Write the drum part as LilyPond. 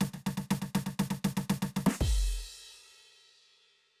\new DrumStaff \drummode { \time 4/4 \tempo 4 = 120 sn16 sn16 sn16 sn16 sn16 sn16 sn16 sn16 sn16 sn16 sn16 sn16 sn16 sn16 sn16 sn16 | <cymc bd>4 r4 r4 r4 | }